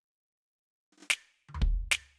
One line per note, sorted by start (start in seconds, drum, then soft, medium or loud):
0.92 snare soft
0.97 snare soft
1.00 snare soft
1.02 snare soft
1.10 snare loud
1.48 high tom soft
1.54 floor tom medium
1.61 kick medium
1.91 snare loud